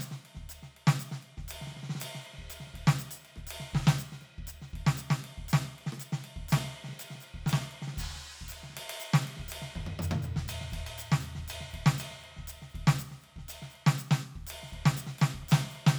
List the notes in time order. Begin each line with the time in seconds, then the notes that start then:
0.01 ride bell, percussion
0.12 snare
0.25 ride
0.35 kick, snare
0.49 ride bell, percussion
0.63 snare
0.77 ride
0.87 snare
1.00 ride, percussion
1.12 snare
1.21 ride, percussion
1.38 kick, snare
1.48 ride, percussion
1.62 snare
1.67 snare
1.72 snare
1.77 snare
1.83 snare
1.90 snare
1.95 snare
2.01 snare, ride, percussion
2.15 snare
2.22 ride, percussion
2.34 snare
2.39 kick, snare
2.50 ride, percussion
2.60 snare
2.67 snare
2.74 kick, ride
2.87 snare
2.99 ride, percussion
3.11 percussion
3.25 ride
3.36 kick, cross-stick
3.47 ride, percussion
3.60 snare
3.69 percussion
3.74 kick, snare
3.87 snare
3.99 ride bell, percussion
4.12 snare
4.21 snare, ride, percussion
4.34 snare
4.38 kick, snare
4.47 ride bell, percussion
4.62 snare
4.69 percussion
4.74 kick, ride
4.79 kick
4.87 snare
4.97 ride, percussion
5.11 snare
5.24 ride
5.38 kick
5.49 percussion
5.53 snare, ride
5.62 snare
5.79 ride
5.87 snare
5.92 cross-stick
5.98 snare, ride, percussion
6.13 snare
6.24 ride
6.36 kick
6.42 kick
6.49 snare, percussion
6.53 ride
6.57 cross-stick
6.60 cross-stick, snare
6.67 snare
6.84 snare
6.89 snare
6.93 snare
6.99 ride, percussion
7.11 snare
7.15 snare
7.21 ride, percussion
7.34 kick
7.46 snare, ride, percussion
7.53 cross-stick, snare
7.61 snare
7.71 ride
7.82 snare
7.88 snare
7.94 kick, snare
7.98 percussion, crash
8.04 kick
8.10 snare
8.16 snare
8.41 kick
8.49 ride, percussion
8.63 snare
8.70 snare
8.74 snare
8.77 snare, ride
8.79 snare
8.90 ride
9.00 ride bell, percussion
9.14 snare
9.20 cross-stick, percussion
9.27 ride
9.37 kick, snare
9.48 ride, percussion
9.62 snare
9.76 kick, mid tom
9.87 mid tom
9.99 mid tom, percussion
10.11 mid tom
10.23 mid tom, percussion
10.36 kick, snare
10.48 ride bell, percussion
10.61 snare
10.70 kick, ride bell, percussion
10.79 kick
10.87 ride bell
10.98 ride, percussion
11.12 snare
11.21 percussion
11.25 ride
11.35 kick, snare
11.48 ride bell, percussion
11.61 snare
11.70 kick, percussion
11.74 ride
11.86 snare
11.98 ride bell, percussion
12.11 snare
12.20 percussion
12.24 ride
12.37 kick, snare
12.48 ride, percussion, floor tom
12.62 snare
12.70 percussion
12.75 kick, ride
12.80 kick
12.87 snare
12.99 ride, percussion
13.12 snare
13.20 ride, percussion
13.36 kick, snare
13.49 ride bell, percussion
13.62 snare
13.70 percussion
13.76 ride
13.87 snare
13.98 percussion
14.11 snare
14.18 percussion
14.36 kick
14.47 ride, percussion
14.63 snare
14.68 percussion
14.73 kick, ride
14.86 snare
14.97 ride, percussion
15.07 snare
15.19 snare, ride, percussion
15.34 kick
15.49 snare, ride, percussion
15.61 snare
15.71 percussion
15.75 ride
15.87 snare